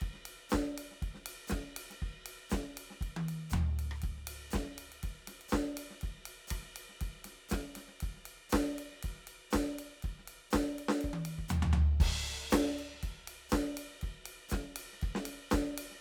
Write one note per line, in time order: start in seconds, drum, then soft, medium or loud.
0.01 kick medium
0.01 ride medium
0.14 snare soft
0.25 ride loud
0.49 snare medium
0.49 hi-hat pedal loud
0.49 ride medium
0.54 kick medium
0.78 ride loud
0.91 snare soft
1.02 kick medium
1.02 ride soft
1.14 snare soft
1.26 ride loud
1.47 snare medium
1.47 hi-hat pedal loud
1.47 ride medium
1.52 kick medium
1.76 ride loud
1.90 snare soft
1.90 ride medium
2.02 kick medium
2.26 ride loud
2.50 kick medium
2.50 snare loud
2.50 hi-hat pedal loud
2.50 ride medium
2.77 ride loud
2.90 snare soft
3.01 kick medium
3.01 ride medium
3.16 high tom loud
3.29 ride medium
3.50 kick medium
3.50 floor tom loud
3.50 hi-hat pedal loud
3.79 ride medium
3.91 cross-stick medium
4.02 kick medium
4.02 ride medium
4.17 snare soft
4.27 ride loud
4.51 kick medium
4.51 snare loud
4.51 hi-hat pedal loud
4.51 ride medium
4.78 ride medium
4.87 snare soft
4.92 ride medium
5.03 kick medium
5.03 ride medium
5.19 snare soft
5.27 snare soft
5.27 ride medium
5.41 ride medium
5.48 snare medium
5.48 hi-hat pedal loud
5.53 kick medium
5.53 ride medium
5.68 snare soft
5.77 ride loud
5.90 snare soft
6.01 kick medium
6.01 ride medium
6.16 snare soft
6.26 ride loud
6.47 kick medium
6.47 cross-stick medium
6.47 hi-hat pedal loud
6.47 ride loud
6.62 snare soft
6.76 ride loud
6.89 snare soft
7.01 kick medium
7.01 ride medium
7.15 snare soft
7.24 snare soft
7.24 ride medium
7.49 kick medium
7.49 snare medium
7.49 hi-hat pedal loud
7.49 ride medium
7.75 snare soft
7.75 ride medium
7.88 snare soft
8.00 kick medium
8.00 ride medium
8.16 snare soft
8.26 ride medium
8.49 kick medium
8.49 snare loud
8.49 hi-hat pedal loud
8.49 ride loud
8.78 ride medium
8.92 snare soft
9.03 kick medium
9.03 ride medium
9.15 snare soft
9.27 ride medium
9.51 snare medium
9.51 hi-hat pedal medium
9.51 ride loud
9.55 kick medium
9.79 ride medium
10.03 kick medium
10.03 ride medium
10.18 snare soft
10.28 ride medium
10.51 kick medium
10.51 snare loud
10.51 hi-hat pedal loud
10.51 ride loud
10.78 ride medium
10.89 snare medium
11.01 kick soft
11.01 ride medium
11.13 high tom loud
11.25 ride medium
11.38 kick soft
11.48 floor tom loud
11.48 hi-hat pedal loud
11.62 floor tom loud
11.73 floor tom loud
12.00 kick medium
12.00 crash loud
12.00 ride loud
12.26 ride soft
12.50 kick soft
12.50 snare loud
12.50 hi-hat pedal loud
12.50 ride loud
12.79 ride medium
12.93 snare soft
13.03 kick medium
13.03 ride medium
13.28 ride loud
13.49 kick medium
13.49 snare medium
13.49 hi-hat pedal medium
13.49 ride loud
13.77 ride loud
13.92 snare soft
14.01 kick medium
14.01 ride medium
14.26 ride loud
14.49 kick medium
14.49 snare medium
14.49 hi-hat pedal loud
14.49 ride medium
14.76 ride loud
14.92 snare soft
15.02 kick medium
15.02 ride medium
15.15 snare medium
15.25 ride loud
15.51 kick medium
15.51 snare loud
15.51 hi-hat pedal loud
15.51 ride medium
15.78 ride loud
15.91 snare soft